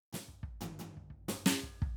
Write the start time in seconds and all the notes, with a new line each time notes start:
0.13 snare, floor tom
0.28 kick
0.43 kick
0.61 floor tom, high tom
0.79 floor tom, high tom
0.97 kick
1.10 kick
1.28 snare, floor tom
1.46 snare, floor tom
1.63 kick
1.82 kick